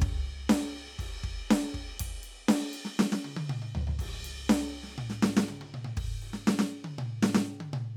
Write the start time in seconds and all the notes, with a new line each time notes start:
0.01 kick, ride
0.49 snare, ride
0.99 kick, ride
1.24 kick
1.51 snare, ride
1.74 kick
2.00 kick, ride
2.23 ride
2.49 snare, ride
2.73 ride bell
2.85 snare
2.99 snare
3.12 snare
3.25 high tom
3.37 high tom
3.50 mid tom
3.62 mid tom
3.75 floor tom
3.87 floor tom
3.99 kick, ride
4.25 ride
4.49 snare, ride
4.71 ride
4.83 snare
4.87 snare
4.90 snare
4.98 mid tom
5.10 snare
5.23 snare
5.37 snare
5.49 high tom
5.61 high tom
5.74 mid tom
5.85 mid tom
5.97 kick, crash
6.22 ride
6.33 snare
6.47 snare
6.59 snare
6.84 high tom
6.99 mid tom
7.23 snare
7.35 snare
7.48 high tom
7.60 high tom
7.73 mid tom